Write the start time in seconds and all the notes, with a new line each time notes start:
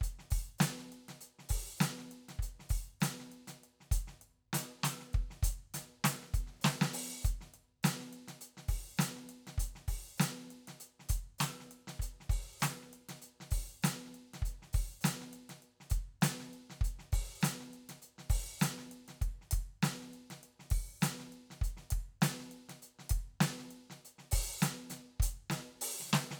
0.01 closed hi-hat, kick
0.19 snare
0.30 open hi-hat, kick
0.58 closed hi-hat, snare, hi-hat pedal
0.78 snare
0.92 closed hi-hat
1.08 snare, closed hi-hat
1.21 closed hi-hat
1.39 snare
1.49 open hi-hat, kick
1.78 closed hi-hat, snare, hi-hat pedal
1.98 snare
2.11 closed hi-hat
2.29 snare, closed hi-hat
2.39 closed hi-hat, kick
2.60 snare
2.69 open hi-hat, kick
3.00 closed hi-hat, snare, hi-hat pedal
3.19 snare
3.32 closed hi-hat
3.47 closed hi-hat, snare
3.64 closed hi-hat
3.80 snare
3.91 closed hi-hat, kick
4.07 snare
4.21 closed hi-hat
4.53 closed hi-hat, snare
4.83 closed hi-hat, snare
5.00 snare
5.13 kick, closed hi-hat
5.30 snare
5.43 closed hi-hat, kick
5.74 closed hi-hat, snare
6.04 closed hi-hat, snare
6.22 snare
6.34 closed hi-hat, kick
6.47 snare
6.51 snare
6.54 snare
6.60 snare, hi-hat pedal
6.64 snare
6.81 snare
6.94 open hi-hat
7.22 closed hi-hat, kick, hi-hat pedal
7.41 snare
7.54 snare, closed hi-hat
7.83 closed hi-hat, snare, hi-hat pedal
8.00 snare
8.13 closed hi-hat
8.28 snare, closed hi-hat
8.41 closed hi-hat
8.57 snare
8.68 open hi-hat, kick
8.97 closed hi-hat, snare, hi-hat pedal
9.16 snare
9.29 closed hi-hat
9.47 snare, closed hi-hat
9.58 closed hi-hat, kick
9.75 snare
9.88 open hi-hat, kick
10.18 closed hi-hat, snare, hi-hat pedal
10.38 snare
10.51 closed hi-hat
10.67 snare, closed hi-hat
10.80 closed hi-hat
11.00 snare
11.09 closed hi-hat, kick, snare
11.38 closed hi-hat, snare, hi-hat pedal
11.60 snare
11.71 closed hi-hat
11.87 snare, closed hi-hat
11.99 closed hi-hat, kick
12.20 snare
12.29 open hi-hat, kick
12.60 closed hi-hat, snare, hi-hat pedal
12.82 snare
12.93 closed hi-hat
13.09 snare, closed hi-hat
13.22 closed hi-hat
13.40 snare
13.51 open hi-hat, kick
13.83 closed hi-hat, snare, hi-hat pedal
14.05 snare
14.14 closed hi-hat
14.34 snare, closed hi-hat
14.42 closed hi-hat, kick
14.62 snare
14.67 snare
14.73 open hi-hat, kick
15.01 snare, hi-hat pedal
15.05 closed hi-hat
15.21 snare
15.33 closed hi-hat
15.49 snare, closed hi-hat
15.62 closed hi-hat
15.80 snare
15.90 open hi-hat, kick
16.21 closed hi-hat, snare, hi-hat pedal
16.40 snare
16.53 closed hi-hat
16.70 snare
16.81 closed hi-hat, kick
16.99 snare
17.12 open hi-hat, kick
17.41 closed hi-hat, snare, hi-hat pedal
17.60 snare
17.73 closed hi-hat
17.89 snare, closed hi-hat
18.02 closed hi-hat
18.18 snare
18.30 open hi-hat, kick
18.60 closed hi-hat, snare, hi-hat pedal
18.78 snare
18.91 closed hi-hat
19.08 snare, closed hi-hat
19.21 kick, closed hi-hat
19.41 snare
19.51 kick, open hi-hat
19.82 closed hi-hat, snare, hi-hat pedal
20.01 snare
20.13 closed hi-hat
20.30 snare, closed hi-hat
20.43 closed hi-hat
20.59 snare
20.70 kick, open hi-hat
21.01 closed hi-hat, snare, hi-hat pedal
21.19 snare
21.32 closed hi-hat
21.50 snare, closed hi-hat
21.61 closed hi-hat, kick
21.77 snare
21.91 kick, open hi-hat
22.21 closed hi-hat, snare, hi-hat pedal
22.39 snare
22.51 closed hi-hat
22.69 snare, closed hi-hat
22.82 closed hi-hat
22.99 snare
23.09 kick, closed hi-hat
23.41 closed hi-hat, snare, hi-hat pedal
23.59 snare
23.71 closed hi-hat
23.90 snare, closed hi-hat
24.05 closed hi-hat
24.18 snare
24.31 open hi-hat, kick
24.60 closed hi-hat, snare, hi-hat pedal
24.90 closed hi-hat, snare
25.20 closed hi-hat, kick
25.50 closed hi-hat, snare
25.81 open hi-hat
26.00 snare
26.05 snare
26.09 snare, hi-hat pedal
26.13 snare
26.31 snare